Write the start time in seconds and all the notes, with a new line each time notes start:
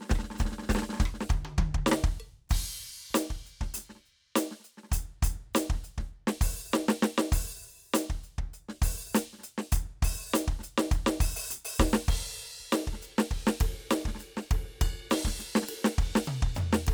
0.01 snare
0.04 snare
0.07 snare, hi-hat pedal
0.10 kick, snare
0.15 cross-stick, snare
0.23 snare
0.30 snare
0.34 snare
0.38 kick, snare, hi-hat pedal
0.40 snare
0.45 snare
0.49 snare
0.52 snare
0.58 snare
0.62 snare
0.66 snare
0.69 kick, snare, hi-hat pedal
0.75 snare
0.78 snare
0.82 snare
0.89 snare
0.93 snare
0.96 snare
1.00 kick, snare, hi-hat pedal
1.05 cross-stick
1.14 snare
1.21 snare
1.29 kick, hi-hat pedal, high tom
1.45 high tom
1.58 kick, high tom
1.74 kick
1.86 snare, hi-hat pedal
1.92 snare
2.04 kick
2.20 percussion
2.48 kick, hi-hat pedal
2.51 kick, crash
3.10 kick
3.15 closed hi-hat, snare
3.30 kick
3.46 closed hi-hat
3.61 kick, snare
3.74 closed hi-hat, snare
3.89 snare
3.95 snare
4.05 closed hi-hat
4.36 closed hi-hat, snare
4.51 snare
4.60 snare
4.64 closed hi-hat
4.77 snare
4.83 snare
4.89 closed hi-hat, kick, snare
5.23 closed hi-hat, kick
5.54 closed hi-hat, snare, hi-hat pedal
5.70 kick
5.75 snare
5.84 closed hi-hat
5.98 kick, snare
6.13 closed hi-hat
6.27 snare
6.41 open hi-hat, kick
6.72 snare, hi-hat pedal
6.88 snare
7.03 snare
7.18 snare
7.32 open hi-hat, kick
7.82 kick
7.93 closed hi-hat, snare, hi-hat pedal
8.10 kick
8.23 closed hi-hat
8.38 kick, crash, ride
8.54 closed hi-hat
8.69 snare
8.82 open hi-hat, kick
9.14 closed hi-hat, snare, hi-hat pedal
9.33 snare
9.39 snare
9.41 closed hi-hat, snare
9.58 snare
9.72 open hi-hat, kick
10.02 open hi-hat, kick
10.32 closed hi-hat, snare, hi-hat pedal
10.48 kick
10.59 snare
10.63 closed hi-hat
10.78 snare
10.91 open hi-hat, kick
11.06 snare
11.20 open hi-hat, kick
11.36 open hi-hat
11.50 closed hi-hat, hi-hat pedal
11.65 open hi-hat
11.79 kick, snare
11.93 snare
12.08 kick, crash
12.60 kick
12.72 snare, hi-hat pedal, ride
12.87 kick
12.93 snare
13.02 hi-hat pedal, ride bell
13.18 snare
13.31 kick, crash
13.47 snare
13.60 kick, ride
13.90 snare, hi-hat pedal, ride
14.05 kick, snare
14.15 snare
14.19 snare, hi-hat pedal, ride
14.37 snare
14.49 kick, hi-hat pedal, ride
14.81 kick, hi-hat pedal, ride bell
15.10 snare, hi-hat pedal, crash
15.25 kick, snare
15.39 snare, hi-hat pedal, ride
15.55 snare
15.62 snare, hi-hat pedal
15.69 ride
15.85 snare
15.98 kick, ride
16.15 snare
16.24 hi-hat pedal, mid tom
16.42 kick
16.55 floor tom, hi-hat pedal
16.73 snare
16.87 kick, ride